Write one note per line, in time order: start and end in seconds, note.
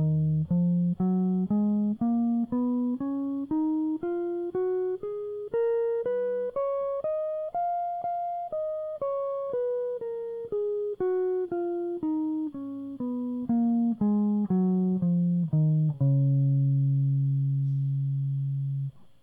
0.00 0.47 D#3
0.52 0.98 F3
1.01 1.49 F#3
1.52 1.96 G#3
2.02 2.49 A#3
2.53 2.99 B3
3.01 3.49 C#4
3.52 4.00 D#4
4.04 4.53 F4
4.55 4.98 F#4
5.04 5.50 G#4
5.54 6.06 A#4
6.06 6.53 B4
6.57 7.03 C#5
7.05 7.52 D#5
7.55 8.04 F5
8.05 8.51 F5
8.53 9.00 D#5
9.02 9.57 C#5
9.54 10.00 B4
10.02 10.50 A#4
10.53 10.97 G#4
11.01 11.50 F#4
11.52 12.00 F4
12.03 12.51 D#4
12.53 13.01 C#4
13.01 13.48 B3
13.50 13.96 A#3
14.02 14.49 G#3
14.51 15.01 F#3
15.04 15.49 F3
15.55 15.94 D#3
16.02 18.93 C#3